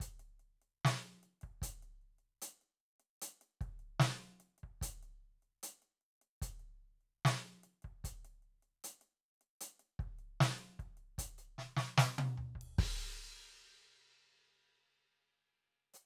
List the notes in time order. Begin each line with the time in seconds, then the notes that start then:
0.01 closed hi-hat, kick
0.20 closed hi-hat
0.40 closed hi-hat
0.62 closed hi-hat
0.85 snare
1.03 closed hi-hat
1.23 closed hi-hat
1.42 kick, closed hi-hat
1.62 closed hi-hat, kick
1.83 closed hi-hat
2.02 closed hi-hat
2.19 closed hi-hat
2.42 closed hi-hat
2.62 closed hi-hat
2.81 closed hi-hat
3.00 closed hi-hat
3.22 closed hi-hat
3.42 closed hi-hat
3.61 kick, closed hi-hat
3.80 closed hi-hat
4.00 snare
4.18 closed hi-hat
4.40 closed hi-hat
4.58 closed hi-hat
4.64 kick
4.82 closed hi-hat, kick
5.03 closed hi-hat
5.43 closed hi-hat
5.63 closed hi-hat
5.82 closed hi-hat
6.01 closed hi-hat
6.22 closed hi-hat
6.42 closed hi-hat, kick
6.60 closed hi-hat
7.01 closed hi-hat
7.25 snare
7.45 closed hi-hat
7.64 closed hi-hat
7.83 kick, closed hi-hat
8.04 closed hi-hat, kick
8.25 closed hi-hat
8.43 closed hi-hat
8.63 closed hi-hat
8.84 closed hi-hat
9.02 closed hi-hat
9.41 closed hi-hat
9.61 closed hi-hat
9.80 closed hi-hat
10.00 kick, closed hi-hat
10.19 closed hi-hat
10.41 snare
10.59 closed hi-hat
10.79 kick, closed hi-hat
10.97 closed hi-hat
11.19 closed hi-hat, kick
11.38 closed hi-hat
11.59 snare
11.77 snare
11.98 snare
12.19 high tom
12.38 floor tom
12.56 kick
12.62 crash
12.79 kick, crash
15.94 hi-hat pedal